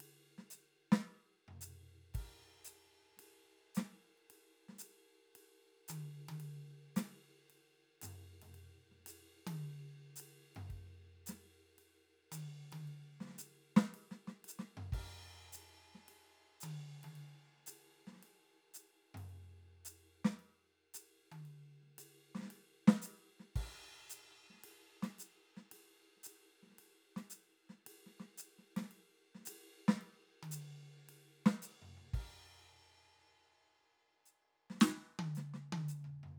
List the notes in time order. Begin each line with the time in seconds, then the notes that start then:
0.01 ride
0.39 snare
0.51 hi-hat pedal
0.55 ride
0.93 snare, ride
1.49 floor tom
1.62 hi-hat pedal, ride
2.15 kick, ride, crash
2.65 hi-hat pedal, ride
3.17 snare, ride
3.75 snare, hi-hat pedal, ride
4.18 ride
4.31 ride
4.69 snare
4.73 snare
4.75 snare
4.79 hi-hat pedal, ride
5.36 ride
5.89 hi-hat pedal, high tom, ride
6.29 high tom, ride
6.41 ride
6.97 snare, hi-hat pedal, ride
7.50 ride
8.02 floor tom, hi-hat pedal, ride
8.42 floor tom, ride
8.55 ride
8.92 snare
8.97 snare
9.00 snare
9.07 hi-hat pedal, ride
9.47 high tom, ride
10.17 hi-hat pedal
10.21 ride
10.56 floor tom, ride
10.70 kick, ride
11.27 snare, hi-hat pedal, ride
11.79 ride
12.32 hi-hat pedal, high tom, ride
12.73 high tom, ride
12.88 ride
13.21 snare
13.26 snare
13.29 snare
13.32 snare
13.36 snare, hi-hat pedal, ride
13.77 snare
13.95 ride
14.12 snare
14.28 snare
14.45 hi-hat pedal, ride
14.60 snare
14.78 floor tom
14.93 kick, crash
15.53 hi-hat pedal, ride
15.95 snare
16.09 ride
16.61 hi-hat pedal, high tom, ride
17.04 high tom, ride
17.16 ride
17.67 hi-hat pedal, ride
18.08 snare
18.13 snare
18.17 snare
18.20 snare, ride
18.75 hi-hat pedal, ride
19.15 floor tom, ride
19.30 ride
19.86 hi-hat pedal, ride
20.25 snare, ride
20.40 ride
20.95 hi-hat pedal, ride
21.32 high tom, ride
21.46 ride
21.82 snare
21.87 snare
21.99 hi-hat pedal, ride
22.35 snare
22.39 snare
22.42 snare
22.45 snare
22.47 snare, ride
22.88 snare
23.02 hi-hat pedal
23.06 ride
23.40 snare
23.56 kick, crash
24.10 hi-hat pedal, ride
24.50 snare
24.54 snare
24.58 snare
24.64 ride
25.03 snare, ride
25.19 hi-hat pedal, ride
25.57 snare
25.72 ride
26.17 snare
26.24 hi-hat pedal, ride
26.63 snare
26.67 snare
26.70 snare
26.72 snare
26.79 ride
27.17 snare, ride
27.31 hi-hat pedal, ride
27.70 snare
27.87 ride
28.07 snare
28.20 snare
28.38 hi-hat pedal, ride
28.59 snare
28.77 snare, ride
28.82 snare
28.92 ride
29.35 snare
29.39 snare
29.41 snare
29.46 hi-hat pedal, ride
29.89 snare
29.95 snare
30.02 ride
30.43 high tom, ride
30.52 hi-hat pedal, ride
31.09 ride
31.47 snare
31.63 hi-hat pedal, ride
31.82 floor tom
31.98 floor tom
32.14 kick, crash
34.26 hi-hat pedal
34.71 snare
34.75 snare
34.78 snare, hi-hat pedal
34.82 snare
35.20 high tom
35.36 snare, hi-hat pedal
35.54 snare
35.73 high tom
35.89 hi-hat pedal
36.05 floor tom
36.24 floor tom